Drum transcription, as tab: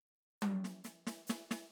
Hi-hat   |--p-p-p-|
Snare    |---ooooo|
High tom |--o-----|